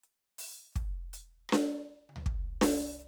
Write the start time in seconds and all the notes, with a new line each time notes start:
0.04 closed hi-hat
0.38 open hi-hat
0.72 kick, hi-hat pedal
0.76 closed hi-hat
1.13 closed hi-hat
1.49 cross-stick, snare
2.09 high tom
2.16 floor tom
2.26 kick
2.61 open hi-hat, snare
2.99 hi-hat pedal